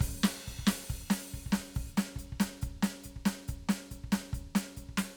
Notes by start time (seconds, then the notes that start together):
0.01 open hi-hat, kick
0.24 snare, crash
0.47 open hi-hat, kick
0.59 kick
0.67 open hi-hat, snare
0.82 snare
0.90 open hi-hat, kick
1.10 open hi-hat, snare
1.31 open hi-hat, kick, snare
1.46 kick
1.52 open hi-hat, snare
1.75 open hi-hat, kick, snare
1.97 closed hi-hat, snare
2.16 closed hi-hat, kick, snare
2.32 kick
2.40 closed hi-hat, snare
2.62 closed hi-hat, kick
2.83 closed hi-hat, snare
3.03 closed hi-hat, kick, snare
3.16 kick
3.26 closed hi-hat, snare
3.47 closed hi-hat, kick, snare
3.69 closed hi-hat, snare
3.90 closed hi-hat, kick, snare
4.04 kick
4.12 closed hi-hat, snare
4.32 closed hi-hat, kick, snare
4.55 closed hi-hat, snare
4.76 closed hi-hat, kick, snare
4.89 kick
4.98 closed hi-hat, snare